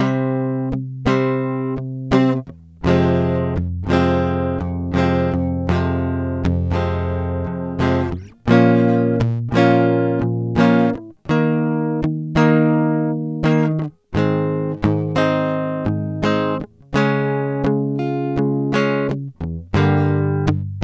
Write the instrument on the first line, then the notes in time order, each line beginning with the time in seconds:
acoustic guitar
0.00 C3 G3 C4
0.73 C3
1.07 C3 G3 C4
1.78 C3
2.13 C3 G3 C4
2.48 E2
2.85 F2 C3 F3
2.90 G#3 C4
3.57 F2
3.85 F2
3.90 C3 F3 G#3
3.94 C4 F4
4.60 F2 C3
4.76 F3
4.83 C4
4.95 F2 C3 G#3
5.01 F4
5.33 F2 C3
5.70 F2 C3 F3
5.75 G#3
6.46 F2 C3
6.73 F2 C3 F3 G#3
6.78 C4
7.46 F2
7.80 F2 C3 F3 G#3
7.84 C4
8.49 A#2 F3 A#3
8.53 C#4 F4
9.21 A#2
9.54 A#2 F3 A#3
9.58 C#4 F4
10.23 A#2 F3
10.48 C#4
10.57 A#2 F3 A#3
10.62 F4
11.30 D#3 A#3 D#4
12.05 D#3
12.36 D#3 A#3 D#4
13.39 D#4
13.45 D#3 A#3
13.80 D3
14.16 G#2 D#3 G#3 C4
14.85 G#2 D#3 G#3
15.17 C4 D#4 G#4
15.87 G#2 D#3
16.24 G#3 C4 D#4
16.96 C#3 G#3 C#4
17.66 C#3 G#3
18.00 F4
18.38 C#3 G#3
18.74 G#3 C#4 F4
19.10 C#3
19.42 E2
19.75 G2 D3 G3 A#3
20.48 G2 D3